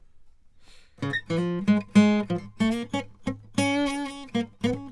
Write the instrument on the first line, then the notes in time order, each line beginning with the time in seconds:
acoustic guitar
1.03 C#3
1.30 E3
1.39 F3
1.68 G#3
1.96 G#3
2.30 F3
2.61 A3
2.94 C#4
3.27 C4
3.58 D4
4.35 A#3
4.64 B3